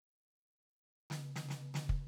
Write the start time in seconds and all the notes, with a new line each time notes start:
1.11 snare, high tom
1.36 snare, high tom
1.49 snare, high tom
1.75 snare, high tom
1.90 kick